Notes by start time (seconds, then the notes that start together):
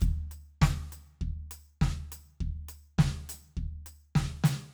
0.01 kick, percussion
0.31 percussion
0.62 kick, snare
0.92 percussion
1.21 kick
1.51 percussion
1.81 kick, snare
2.12 percussion
2.41 kick, ride
2.69 percussion
2.99 kick, snare
3.29 percussion
3.57 kick, percussion
3.86 percussion
4.15 kick, snare
4.44 snare, percussion